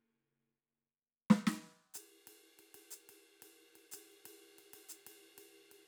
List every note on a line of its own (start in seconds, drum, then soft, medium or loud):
1.30 snare loud
1.47 snare loud
1.94 hi-hat pedal medium
1.94 ride medium
2.27 ride medium
2.59 ride soft
2.74 ride medium
2.91 hi-hat pedal medium
3.09 ride soft
3.42 ride medium
3.75 ride soft
3.91 hi-hat pedal medium
3.91 ride medium
4.11 hi-hat pedal soft
4.26 ride medium
4.58 ride soft
4.73 ride medium
4.89 hi-hat pedal medium
5.07 ride medium
5.38 ride medium
5.71 ride soft